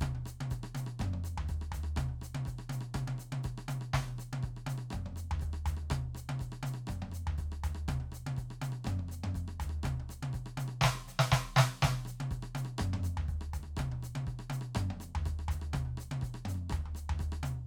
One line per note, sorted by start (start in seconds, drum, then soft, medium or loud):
0.01 kick medium
0.01 cross-stick medium
0.01 hi-hat pedal medium
0.01 high tom loud
0.16 high tom medium
0.20 high tom soft
0.26 cross-stick medium
0.26 hi-hat pedal loud
0.41 high tom loud
0.51 kick medium
0.51 cross-stick medium
0.51 hi-hat pedal medium
0.64 cross-stick medium
0.75 hi-hat pedal loud
0.75 high tom loud
0.87 cross-stick medium
1.00 kick medium
1.00 cross-stick medium
1.00 hi-hat pedal medium
1.00 mid tom loud
1.14 mid tom medium
1.24 cross-stick soft
1.24 hi-hat pedal loud
1.38 floor tom loud
1.49 kick medium
1.49 cross-stick soft
1.49 hi-hat pedal medium
1.62 cross-stick soft
1.73 floor tom loud
1.73 hi-hat pedal medium
1.84 cross-stick soft
1.97 kick medium
1.97 cross-stick medium
1.97 hi-hat pedal medium
1.97 high tom loud
2.09 high tom soft
2.12 high tom soft
2.22 cross-stick soft
2.22 hi-hat pedal loud
2.35 high tom loud
2.46 kick medium
2.46 cross-stick soft
2.46 hi-hat pedal medium
2.59 cross-stick medium
2.70 hi-hat pedal medium
2.70 high tom loud
2.81 cross-stick medium
2.95 kick medium
2.95 cross-stick medium
2.95 hi-hat pedal medium
2.95 high tom loud
3.08 high tom loud
3.19 cross-stick soft
3.19 hi-hat pedal medium
3.33 high tom loud
3.44 kick medium
3.44 cross-stick medium
3.44 hi-hat pedal medium
3.58 cross-stick medium
3.69 hi-hat pedal loud
3.69 high tom loud
3.82 cross-stick medium
3.94 kick medium
3.94 snare medium
3.94 hi-hat pedal medium
3.94 high tom loud
4.09 high tom medium
4.19 cross-stick soft
4.19 hi-hat pedal medium
4.34 high tom loud
4.43 kick medium
4.43 cross-stick soft
4.43 hi-hat pedal soft
4.57 cross-stick soft
4.67 hi-hat pedal medium
4.67 high tom loud
4.78 cross-stick medium
4.91 kick medium
4.91 cross-stick medium
4.91 hi-hat pedal medium
4.91 mid tom loud
5.07 mid tom medium
5.17 cross-stick soft
5.17 hi-hat pedal medium
5.32 floor tom loud
5.40 kick medium
5.40 cross-stick soft
5.40 hi-hat pedal medium
5.54 cross-stick medium
5.66 floor tom loud
5.66 hi-hat pedal medium
5.77 cross-stick soft
5.91 kick medium
5.91 cross-stick medium
5.91 hi-hat pedal medium
5.91 high tom loud
6.15 cross-stick soft
6.15 hi-hat pedal loud
6.30 high tom loud
6.40 kick medium
6.40 cross-stick soft
6.40 hi-hat pedal medium
6.53 cross-stick medium
6.64 hi-hat pedal medium
6.64 high tom loud
6.74 cross-stick medium
6.88 kick medium
6.88 cross-stick medium
6.88 hi-hat pedal medium
6.88 mid tom loud
7.03 mid tom loud
7.12 cross-stick soft
7.12 hi-hat pedal medium
7.28 floor tom loud
7.38 kick medium
7.38 cross-stick soft
7.38 hi-hat pedal medium
7.53 cross-stick soft
7.64 floor tom loud
7.64 hi-hat pedal medium
7.75 cross-stick medium
7.89 kick medium
7.89 cross-stick medium
7.89 hi-hat pedal medium
7.89 high tom loud
8.01 high tom medium
8.03 high tom soft
8.06 high tom soft
8.12 cross-stick soft
8.12 hi-hat pedal medium
8.27 high tom loud
8.37 kick medium
8.37 cross-stick soft
8.37 hi-hat pedal medium
8.51 cross-stick soft
8.62 hi-hat pedal medium
8.62 high tom loud
8.73 cross-stick soft
8.85 kick medium
8.85 cross-stick medium
8.85 hi-hat pedal medium
8.85 mid tom loud
9.00 mid tom medium
9.09 cross-stick soft
9.09 hi-hat pedal medium
9.24 mid tom loud
9.35 kick medium
9.35 cross-stick soft
9.35 hi-hat pedal medium
9.49 cross-stick medium
9.61 floor tom loud
9.61 hi-hat pedal medium
9.70 cross-stick soft
9.84 kick medium
9.84 cross-stick medium
9.84 hi-hat pedal medium
9.84 high tom loud
10.00 high tom medium
10.10 cross-stick soft
10.10 hi-hat pedal medium
10.23 high tom loud
10.34 kick medium
10.34 cross-stick soft
10.34 hi-hat pedal medium
10.47 cross-stick medium
10.58 hi-hat pedal medium
10.58 high tom loud
10.69 cross-stick medium
10.82 kick medium
10.82 snare loud
10.82 hi-hat pedal medium
10.84 snare loud
10.96 cross-stick soft
10.98 cross-stick soft
11.06 kick soft
11.06 snare soft
11.06 hi-hat pedal medium
11.20 snare loud
11.32 kick medium
11.32 snare loud
11.32 hi-hat pedal medium
11.57 snare loud
11.57 hi-hat pedal medium
11.59 snare loud
11.82 kick medium
11.82 snare loud
11.82 hi-hat pedal medium
11.82 high tom loud
12.01 high tom soft
12.06 cross-stick soft
12.06 hi-hat pedal medium
12.21 high tom loud
12.32 kick medium
12.32 cross-stick soft
12.32 hi-hat pedal medium
12.43 cross-stick medium
12.56 hi-hat pedal medium
12.56 high tom loud
12.65 cross-stick medium
12.79 kick medium
12.79 cross-stick medium
12.79 hi-hat pedal medium
12.79 mid tom loud
12.94 mid tom loud
13.04 cross-stick soft
13.04 hi-hat pedal loud
13.18 floor tom loud
13.29 kick medium
13.29 hi-hat pedal soft
13.42 cross-stick medium
13.54 floor tom loud
13.54 hi-hat pedal medium
13.64 cross-stick soft
13.77 kick medium
13.77 cross-stick medium
13.77 hi-hat pedal medium
13.77 high tom loud
13.92 high tom medium
13.96 high tom soft
14.03 cross-stick soft
14.03 hi-hat pedal medium
14.16 high tom loud
14.28 kick medium
14.28 cross-stick soft
14.28 hi-hat pedal soft
14.40 cross-stick medium
14.51 hi-hat pedal medium
14.51 high tom loud
14.62 cross-stick medium
14.76 kick medium
14.76 cross-stick medium
14.76 hi-hat pedal medium
14.76 mid tom loud
14.91 mid tom loud
15.01 cross-stick soft
15.01 hi-hat pedal medium
15.16 floor tom loud
15.26 kick medium
15.26 cross-stick medium
15.26 hi-hat pedal medium
15.40 cross-stick soft
15.49 floor tom loud
15.49 hi-hat pedal medium
15.62 cross-stick soft
15.74 kick medium
15.74 cross-stick medium
15.74 hi-hat pedal medium
15.74 high tom loud
15.86 high tom soft
15.88 high tom soft
15.98 cross-stick medium
15.98 hi-hat pedal medium
16.12 high tom loud
16.22 kick medium
16.22 cross-stick soft
16.22 hi-hat pedal medium
16.35 cross-stick medium
16.46 hi-hat pedal medium
16.46 mid tom loud
16.55 cross-stick soft
16.70 kick medium
16.70 cross-stick medium
16.70 floor tom loud
16.70 hi-hat pedal medium
16.86 floor tom medium
16.95 cross-stick soft
16.95 hi-hat pedal medium
17.10 floor tom loud
17.20 kick medium
17.20 cross-stick medium
17.20 hi-hat pedal medium
17.33 cross-stick medium
17.44 hi-hat pedal loud
17.44 high tom loud